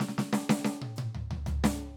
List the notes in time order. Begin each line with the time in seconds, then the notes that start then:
0.01 snare, hi-hat pedal
0.08 snare
0.18 snare
0.33 snare
0.49 snare, hi-hat pedal
0.65 snare
0.82 high tom
0.96 hi-hat pedal, high tom
1.15 floor tom
1.31 floor tom
1.46 floor tom, hi-hat pedal
1.64 open hi-hat, snare
1.69 snare